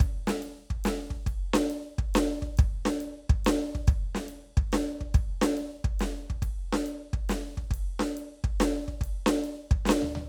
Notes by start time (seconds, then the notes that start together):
0.01 kick, ride
0.28 snare
0.43 ride
0.71 kick
0.85 snare, ride
1.11 kick
1.27 kick, ride
1.54 snare
1.71 ride
1.99 kick
2.15 snare, ride
2.43 kick
2.58 kick, ride
2.86 snare
3.01 ride
3.30 kick
3.46 snare, ride
3.76 kick
3.88 kick, ride
4.16 snare
4.29 ride
4.58 kick
4.73 snare, ride
5.02 kick
5.15 kick, ride
5.43 snare
5.58 ride
5.85 kick
6.01 snare, ride
6.31 kick
6.43 kick, ride
6.74 snare
6.87 ride
7.14 kick
7.30 snare, ride
7.58 kick
7.72 kick, ride
8.00 snare
8.18 ride
8.45 kick
8.61 snare, ride
8.89 kick
9.02 kick, ride
9.27 snare
9.45 ride
9.72 kick
9.86 snare
9.90 snare
10.03 floor tom
10.16 floor tom